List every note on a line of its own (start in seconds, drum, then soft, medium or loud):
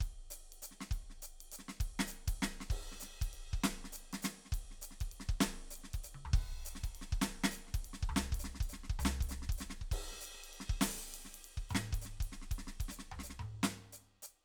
0.01 kick medium
0.01 ride soft
0.31 hi-hat pedal medium
0.31 ride medium
0.53 ride soft
0.63 hi-hat pedal medium
0.63 ride soft
0.71 snare soft
0.81 snare soft
0.91 kick medium
0.91 ride soft
1.10 snare soft
1.23 hi-hat pedal medium
1.23 ride soft
1.41 ride soft
1.52 hi-hat pedal medium
1.52 ride soft
1.59 snare soft
1.69 snare soft
1.81 kick medium
1.81 ride medium
2.00 snare medium
2.08 hi-hat pedal medium
2.12 ride soft
2.28 kick medium
2.28 ride medium
2.43 snare medium
2.61 snare soft
2.70 kick medium
2.70 crash medium
2.92 snare soft
3.00 snare soft
3.00 hi-hat pedal medium
3.22 kick medium
3.22 ride medium
3.34 ride soft
3.54 kick medium
3.64 snare loud
3.64 ride medium
3.85 snare soft
3.93 hi-hat pedal medium
3.93 ride soft
4.13 snare medium
4.13 ride soft
4.23 snare medium
4.23 hi-hat pedal medium
4.23 ride medium
4.46 snare soft
4.53 kick medium
4.53 ride medium
4.71 snare soft
4.82 hi-hat pedal medium
4.82 ride medium
4.91 snare soft
5.01 kick soft
5.01 ride soft
5.12 ride soft
5.20 snare soft
5.29 kick medium
5.41 snare loud
5.41 ride medium
5.71 hi-hat pedal medium
5.76 ride soft
5.84 snare soft
5.94 kick soft
5.94 ride soft
6.04 hi-hat pedal medium
6.04 ride soft
6.15 high tom soft
6.26 floor tom medium
6.34 kick medium
6.34 crash soft
6.66 hi-hat pedal medium
6.66 ride medium
6.76 snare soft
6.84 kick soft
6.84 ride soft
6.95 ride soft
7.02 snare soft
7.13 kick medium
7.22 snare loud
7.22 ride medium
7.44 snare loud
7.52 hi-hat pedal medium
7.56 ride soft
7.68 snare soft
7.75 kick medium
7.75 ride medium
7.85 ride soft
7.94 snare soft
8.03 kick medium
8.10 floor tom medium
8.17 snare loud
8.33 kick medium
8.33 ride medium
8.40 hi-hat pedal medium
8.45 snare soft
8.55 snare soft
8.61 kick medium
8.61 ride bell soft
8.69 snare soft
8.69 hi-hat pedal medium
8.84 snare soft
8.90 kick medium
9.00 floor tom medium
9.00 hi-hat pedal medium
9.05 snare loud
9.21 kick soft
9.21 ride medium
9.29 snare soft
9.29 hi-hat pedal medium
9.43 snare soft
9.50 kick medium
9.50 ride medium
9.58 snare soft
9.58 hi-hat pedal medium
9.70 snare soft
9.82 kick soft
9.92 kick medium
9.92 crash medium
10.12 snare soft
10.21 hi-hat pedal medium
10.26 ride soft
10.35 cross-stick soft
10.44 ride soft
10.53 ride soft
10.61 snare soft
10.70 kick medium
10.81 open hi-hat medium
10.81 snare loud
11.14 ride medium
11.25 snare soft
11.35 ride medium
11.58 kick soft
11.70 hi-hat pedal soft
11.70 mid tom medium
11.75 snare medium
11.93 kick medium
11.93 ride medium
12.02 snare soft
12.02 hi-hat pedal medium
12.12 snare soft
12.21 kick medium
12.21 ride medium
12.33 snare soft
12.42 snare soft
12.51 kick soft
12.51 ride medium
12.59 snare soft
12.68 snare soft
12.80 kick soft
12.80 ride medium
12.89 snare soft
12.89 hi-hat pedal medium
12.99 snare soft
13.12 floor tom soft
13.20 snare soft
13.24 hi-hat pedal medium
13.30 snare soft
13.40 mid tom medium
13.64 snare loud
13.93 hi-hat pedal medium
14.23 hi-hat pedal medium